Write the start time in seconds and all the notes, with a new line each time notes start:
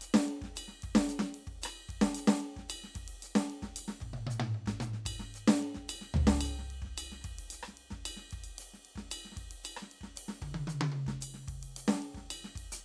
0.01 hi-hat pedal, ride bell
0.14 snare
0.28 ride
0.41 kick, snare
0.55 hi-hat pedal, ride bell
0.68 snare
0.82 kick, ride
0.90 kick
0.95 snare
1.09 hi-hat pedal, ride bell
1.19 snare
1.34 ride
1.47 kick
1.62 cross-stick, hi-hat pedal, ride bell
1.89 kick, ride
1.94 kick
2.01 snare
2.15 hi-hat pedal, ride bell
2.27 snare
2.40 ride
2.56 kick, snare
2.69 hi-hat pedal, ride bell
2.83 snare
2.94 kick, snare, ride
3.01 kick
3.08 ride
3.22 hi-hat pedal, ride bell
3.35 snare
3.50 ride
3.62 kick, snare
3.76 hi-hat pedal, ride bell
3.88 snare
4.00 kick, mid tom
4.08 kick
4.13 mid tom
4.27 hi-hat pedal, mid tom
4.40 mid tom
4.54 mid tom
4.66 kick, snare
4.80 hi-hat pedal, mid tom
4.93 snare
5.05 kick, ride bell
5.12 kick
5.19 snare
5.34 hi-hat pedal, ride
5.48 snare
5.62 ride
5.74 kick, snare
5.88 hi-hat pedal, ride bell
6.01 snare
6.14 kick, floor tom
6.22 kick
6.27 snare
6.36 snare
6.41 hi-hat pedal, ride bell
6.58 snare
6.70 ride
6.82 kick, snare
6.87 kick
6.97 hi-hat pedal, ride bell
7.12 snare
7.21 kick, cross-stick, ride
7.31 kick, snare
7.38 snare, ride
7.50 hi-hat pedal, ride bell
7.63 cross-stick
7.68 snare
7.77 ride
7.90 kick, snare
8.05 hi-hat pedal, ride bell
8.16 snare
8.31 kick, ride
8.38 kick
8.44 ride bell
8.58 hi-hat pedal, ride
8.73 snare
8.85 ride
8.95 kick, snare
9.10 hi-hat pedal, ride bell
9.25 snare
9.32 snare
9.36 kick, ride
9.49 snare, ride
9.64 hi-hat pedal, ride bell
9.76 cross-stick
9.82 snare
9.91 ride
10.01 kick, snare
10.16 hi-hat pedal, ride
10.28 snare
10.42 kick, high tom
10.54 open hi-hat, high tom
10.67 hi-hat pedal, high tom
10.81 high tom
10.92 high tom
11.06 kick, snare
11.11 kick
11.21 hi-hat pedal, ride bell
11.34 snare
11.43 cross-stick
11.48 kick, ride
11.54 kick
11.63 ride
11.76 hi-hat pedal, ride
11.88 snare
11.94 snare
12.02 ride
12.14 kick, snare
12.30 hi-hat pedal, ride bell
12.44 snare
12.55 kick, ride
12.61 kick
12.72 closed hi-hat